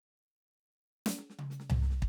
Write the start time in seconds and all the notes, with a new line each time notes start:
1.06 snare
1.19 snare
1.30 snare
1.39 high tom
1.50 snare, hi-hat pedal
1.60 snare
1.70 floor tom
1.82 snare
1.90 snare
2.02 kick